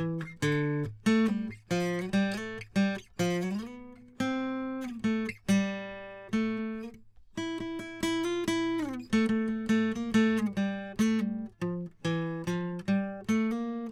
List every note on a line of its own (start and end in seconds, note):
0.00 0.30 E3
0.44 0.90 D3
1.08 1.28 A3
1.28 1.52 G3
1.72 2.12 F3
2.15 2.36 G3
2.36 2.63 A3
2.77 3.03 G3
3.21 3.67 F3
3.69 3.98 B3
4.22 4.90 C4
5.06 5.36 A3
5.50 6.32 G3
6.34 6.95 A3
7.39 7.59 E4
7.60 7.80 E4
7.81 8.05 E4
8.05 8.26 E4
8.26 8.47 F4
8.49 9.06 E4
9.14 9.29 A3
9.31 9.50 A3
9.50 9.69 A3
9.71 9.98 A3
9.98 10.15 A#3
10.16 10.56 A3
10.58 10.97 G3
11.01 11.20 A3
11.21 11.52 G3
11.63 11.92 F3
12.06 12.45 E3
12.49 12.87 F3
12.89 13.26 G3
13.30 13.53 A3
13.53 13.92 A#3